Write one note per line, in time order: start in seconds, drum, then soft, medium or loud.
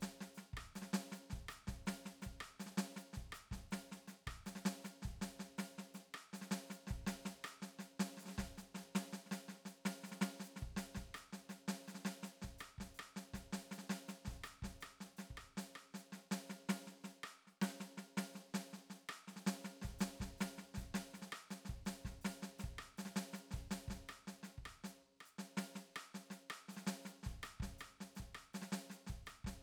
0.01 snare medium
0.01 hi-hat pedal soft
0.21 snare soft
0.35 snare soft
0.35 hi-hat pedal soft
0.54 kick soft
0.54 cross-stick medium
0.76 snare soft
0.76 hi-hat pedal soft
0.82 snare soft
0.94 snare medium
1.12 snare soft
1.12 hi-hat pedal soft
1.30 kick soft
1.30 snare soft
1.49 cross-stick medium
1.49 hi-hat pedal soft
1.68 kick soft
1.68 snare soft
1.87 snare medium
1.87 hi-hat pedal soft
2.06 snare soft
2.22 snare soft
2.22 hi-hat pedal soft
2.27 kick soft
2.41 cross-stick medium
2.60 snare soft
2.60 hi-hat pedal soft
2.67 snare soft
2.78 snare medium
2.96 snare soft
2.96 hi-hat pedal soft
3.14 kick soft
3.14 snare soft
3.33 cross-stick medium
3.33 hi-hat pedal soft
3.52 kick soft
3.52 snare soft
3.71 snare medium
3.71 hi-hat pedal soft
3.92 snare soft
4.08 snare soft
4.08 hi-hat pedal soft
4.27 kick soft
4.27 cross-stick medium
4.46 snare soft
4.46 hi-hat pedal soft
4.56 snare soft
4.66 snare medium
4.85 snare soft
4.85 hi-hat pedal soft
5.02 kick soft
5.02 snare soft
5.05 snare soft
5.22 snare medium
5.22 hi-hat pedal soft
5.40 snare soft
5.58 snare medium
5.58 hi-hat pedal soft
5.78 snare soft
5.94 snare soft
5.94 hi-hat pedal soft
6.14 cross-stick medium
6.33 snare soft
6.33 hi-hat pedal soft
6.42 snare soft
6.51 snare medium
6.70 snare soft
6.70 hi-hat pedal soft
6.87 kick soft
6.87 snare soft
7.07 snare medium
7.07 hi-hat pedal soft
7.26 snare medium
7.45 cross-stick medium
7.45 hi-hat pedal soft
7.62 snare soft
7.79 snare soft
7.79 hi-hat pedal soft
8.00 snare medium
8.17 snare soft
8.17 hi-hat pedal soft
8.22 snare soft
8.26 snare soft
8.28 snare soft
8.38 kick soft
8.38 snare medium
8.58 snare soft
8.58 hi-hat pedal soft
8.75 snare soft
8.77 snare soft
8.95 snare medium
8.95 hi-hat pedal soft
9.13 snare soft
9.26 snare soft
9.32 snare medium
9.32 hi-hat pedal soft
9.49 snare soft
9.66 snare soft
9.66 hi-hat pedal soft
9.86 snare medium
10.04 snare soft
10.04 hi-hat pedal soft
10.12 snare soft
10.22 snare medium
10.40 snare soft
10.44 hi-hat pedal soft
10.56 snare soft
10.62 kick soft
10.77 snare medium
10.77 hi-hat pedal soft
10.95 kick soft
10.95 snare soft
11.15 cross-stick medium
11.15 hi-hat pedal soft
11.33 snare soft
11.50 snare soft
11.50 hi-hat pedal soft
11.68 snare medium
11.88 snare soft
11.88 hi-hat pedal soft
11.95 snare soft
12.05 snare medium
12.23 snare soft
12.23 hi-hat pedal soft
12.42 kick soft
12.42 snare soft
12.59 cross-stick medium
12.59 hi-hat pedal soft
12.78 kick soft
12.78 snare soft
12.95 hi-hat pedal soft
12.99 cross-stick medium
13.17 snare soft
13.34 kick soft
13.34 snare soft
13.34 hi-hat pedal soft
13.53 snare medium
13.71 snare soft
13.71 hi-hat pedal soft
13.79 snare soft
13.90 snare medium
14.08 snare soft
14.08 hi-hat pedal soft
14.25 kick soft
14.25 snare soft
14.28 snare soft
14.44 cross-stick medium
14.44 hi-hat pedal soft
14.63 kick soft
14.63 snare soft
14.81 cross-stick medium
14.81 hi-hat pedal soft
15.01 snare soft
15.17 snare soft
15.17 hi-hat pedal soft
15.31 kick soft
15.38 cross-stick medium
15.57 snare medium
15.57 hi-hat pedal soft
15.76 cross-stick soft
15.94 snare soft
15.94 hi-hat pedal soft
16.13 snare soft
16.32 snare medium
16.50 snare soft
16.69 snare medium
16.87 snare soft
17.04 snare soft
17.04 hi-hat pedal soft
17.24 cross-stick medium
17.47 snare soft
17.62 snare medium
17.80 snare soft
17.98 snare soft
18.18 snare medium
18.35 snare soft
18.54 snare medium
18.73 snare soft
18.90 snare soft
19.09 cross-stick medium
19.28 snare soft
19.36 snare soft
19.47 snare medium
19.65 snare soft
19.82 snare soft
19.84 kick soft
19.84 snare soft
19.99 snare medium
19.99 hi-hat pedal soft
20.21 kick soft
20.21 snare soft
20.38 snare medium
20.38 hi-hat pedal soft
20.58 snare soft
20.75 snare soft
20.76 kick soft
20.76 snare soft
20.76 hi-hat pedal soft
20.95 snare medium
21.14 snare soft
21.14 hi-hat pedal soft
21.22 snare soft
21.33 cross-stick medium
21.51 snare soft
21.51 hi-hat pedal soft
21.65 snare soft
21.70 kick soft
21.86 snare medium
21.86 hi-hat pedal soft
22.05 kick soft
22.05 snare soft
22.22 snare medium
22.22 hi-hat pedal soft
22.43 snare soft
22.59 snare soft
22.59 hi-hat pedal soft
22.64 kick soft
22.79 cross-stick medium
22.98 snare soft
22.98 hi-hat pedal soft
23.05 snare soft
23.16 snare medium
23.34 snare soft
23.34 hi-hat pedal soft
23.51 snare soft
23.53 kick soft
23.53 snare soft
23.71 snare medium
23.71 hi-hat pedal soft
23.88 kick soft
23.88 snare soft
24.09 cross-stick medium
24.09 hi-hat pedal soft
24.28 snare soft
24.43 snare soft
24.43 hi-hat pedal soft
24.58 kick soft
24.66 cross-stick medium
24.84 snare soft
24.84 hi-hat pedal soft
25.21 cross-stick soft
25.26 hi-hat pedal soft
25.39 snare soft
25.57 snare medium
25.57 hi-hat pedal soft
25.76 snare soft
25.96 cross-stick medium
25.96 hi-hat pedal soft
26.15 snare soft
26.31 snare soft
26.31 hi-hat pedal soft
26.50 cross-stick medium
26.69 snare soft
26.69 hi-hat pedal soft
26.77 snare soft
26.87 snare medium
27.05 snare soft
27.05 hi-hat pedal soft
27.23 snare soft
27.26 kick soft
27.26 snare soft
27.43 cross-stick medium
27.43 hi-hat pedal soft
27.60 kick soft
27.60 snare soft
27.79 cross-stick medium
27.79 hi-hat pedal soft
28.01 snare soft
28.16 snare soft
28.16 hi-hat pedal soft
28.20 kick soft
28.35 cross-stick medium
28.54 snare soft
28.54 hi-hat pedal soft
28.62 snare soft
28.72 snare medium
28.90 snare soft
28.90 hi-hat pedal soft
29.07 kick soft
29.07 snare soft
29.27 cross-stick medium
29.27 hi-hat pedal soft
29.45 kick soft
29.45 snare soft